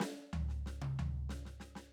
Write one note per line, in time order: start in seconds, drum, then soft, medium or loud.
0.00 snare medium
0.20 snare soft
0.33 floor tom loud
0.49 snare soft
0.66 snare soft
0.82 high tom loud
0.99 floor tom medium
1.29 snare soft
1.46 snare soft
1.60 snare soft
1.76 snare soft